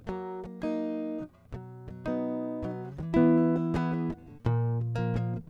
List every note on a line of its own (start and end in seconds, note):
0.09 0.45 F#3
0.09 0.45 A#3
0.45 0.62 F#3
0.45 0.63 A#3
0.64 1.19 F#3
0.64 1.25 A#3
0.64 1.33 D#4
1.24 1.35 F3
1.54 1.89 B2
1.54 1.88 F#3
1.90 2.09 B2
1.90 2.08 F#3
2.07 2.64 F#3
2.07 2.66 B3
2.07 2.83 D#4
2.64 2.98 B2
2.64 2.95 F#3
2.64 2.92 B3
3.15 3.50 B3
3.15 3.39 E4
3.19 3.75 E3
3.39 3.57 E4
3.50 3.59 B3
3.58 3.77 E4
3.76 4.16 E3
3.76 3.96 B3
3.76 3.94 E4
3.76 3.88 G#4
3.94 4.17 B3
3.94 4.18 E4
3.94 4.15 G#4
4.29 4.42 D3
4.47 5.00 A#2
4.47 4.58 D#3
4.83 4.95 F3
4.97 5.16 A#2
4.97 5.16 F3
4.97 5.18 A#3
5.16 5.42 A#2
5.16 5.44 F3
5.16 5.45 A#3